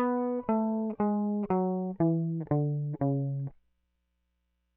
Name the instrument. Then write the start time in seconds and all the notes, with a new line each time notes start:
electric guitar
0.00 B3
0.49 A3
1.01 G#3
1.51 F#3
2.01 E3
2.52 D3
3.03 C#3